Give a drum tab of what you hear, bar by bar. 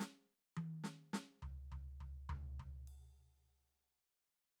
CC |--------|--x-----|
HH |p-------|--------|
SD |o--go---|--------|
T1 |--o-----|--------|
FT |-----ogg|og------|